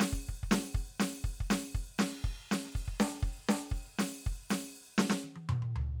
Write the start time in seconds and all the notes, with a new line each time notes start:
0.00 open hi-hat, snare
0.13 kick
0.22 open hi-hat
0.29 kick
0.43 kick
0.51 open hi-hat, snare
0.74 kick
1.00 open hi-hat, snare
1.23 open hi-hat, kick
1.40 kick
1.50 open hi-hat, snare
1.75 kick
1.98 snare, crash
2.24 kick, open hi-hat
2.51 open hi-hat, snare
2.65 snare
2.70 snare
2.75 open hi-hat, kick
2.88 kick
2.99 open hi-hat, snare
3.06 snare
3.14 snare
3.18 snare
3.21 kick, snare
3.49 open hi-hat, snare
3.54 snare
3.71 open hi-hat, kick
3.99 open hi-hat, snare
4.21 open hi-hat
4.26 kick
4.50 open hi-hat, snare
4.75 open hi-hat
4.98 snare
5.10 snare
5.23 high tom
5.36 high tom
5.49 mid tom
5.62 mid tom
5.76 floor tom